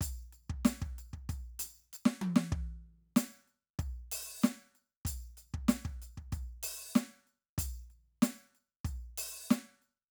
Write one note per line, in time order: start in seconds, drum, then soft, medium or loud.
0.01 kick medium
0.01 percussion loud
0.33 percussion soft
0.50 kick medium
0.65 snare loud
0.65 percussion loud
0.82 kick medium
0.99 percussion medium
1.13 kick soft
1.29 kick medium
1.29 percussion soft
1.60 percussion loud
1.93 percussion medium
2.06 snare loud
2.22 high tom loud
2.36 snare loud
2.52 kick medium
3.16 snare loud
3.16 percussion loud
3.48 percussion soft
3.79 kick medium
3.79 percussion medium
4.12 percussion loud
4.42 snare loud
4.42 percussion medium
4.45 percussion medium
4.75 percussion soft
5.05 kick medium
5.05 percussion loud
5.37 percussion soft
5.54 kick medium
5.69 snare loud
5.69 percussion loud
5.85 kick medium
6.02 percussion soft
6.18 kick soft
6.33 kick medium
6.33 percussion soft
6.63 percussion loud
6.96 snare loud
6.96 percussion medium
7.27 percussion soft
7.58 kick medium
7.58 percussion loud
7.90 percussion soft
8.23 snare loud
8.23 percussion loud
8.55 percussion soft
8.85 kick medium
8.85 percussion medium
9.18 percussion loud
9.51 snare loud
9.51 percussion medium
9.82 percussion soft